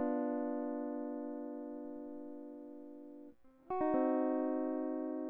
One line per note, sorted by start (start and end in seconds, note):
0.00 3.31 B3
0.00 3.36 D4
0.00 3.30 F4
3.76 5.30 F#4
3.82 5.30 D#4
3.95 5.30 C4